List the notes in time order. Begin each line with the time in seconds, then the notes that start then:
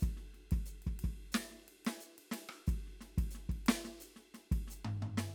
0.01 kick, hi-hat pedal, ride
0.18 snare
0.34 snare, ride
0.52 kick, ride
0.66 hi-hat pedal
0.83 ride
0.87 kick
1.00 ride
1.05 kick
1.33 snare, hi-hat pedal, ride
1.52 snare
1.69 ride
1.86 snare, ride
2.01 hi-hat pedal
2.19 ride
2.32 snare, ride
2.50 cross-stick
2.67 kick, hi-hat pedal, ride
2.87 snare
3.01 snare, ride
3.18 kick, ride
3.31 snare, hi-hat pedal
3.50 kick, ride
3.67 snare, ride
3.85 snare
4.01 hi-hat pedal, ride
4.17 snare
4.35 snare, ride
4.52 kick, ride
4.68 snare, hi-hat pedal
4.85 floor tom
5.03 floor tom
5.18 snare